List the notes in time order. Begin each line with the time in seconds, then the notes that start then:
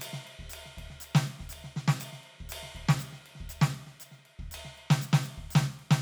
0.01 ride, percussion
0.13 snare
0.27 ride
0.39 kick, snare
0.50 ride, percussion
0.66 snare
0.77 kick, ride
0.90 snare
1.00 percussion
1.04 ride
1.15 snare
1.23 percussion
1.27 ride
1.39 kick, snare
1.49 ride, percussion
1.64 snare
1.76 snare
1.88 snare
1.94 snare
2.00 ride, percussion
2.13 snare
2.21 snare, ride
2.35 snare
2.38 kick, snare
2.49 ride, percussion
2.63 snare
2.75 kick, ride
2.89 snare
2.94 cross-stick
2.99 ride, percussion
3.13 snare
3.26 ride
3.35 snare
3.40 kick
3.49 ride bell, percussion
3.61 snare
3.67 cross-stick
3.73 ride, percussion
3.87 snare
4.00 ride bell, percussion
4.11 snare
4.19 snare
4.25 ride
4.39 kick, snare
4.51 ride bell, percussion
4.65 snare
4.74 ride, percussion
4.90 snare
4.96 cross-stick
5.01 ride, percussion
5.13 snare
5.23 ride, percussion
5.38 kick
5.51 percussion
5.55 snare, ride bell
5.61 snare
5.72 percussion
5.79 ride
5.91 snare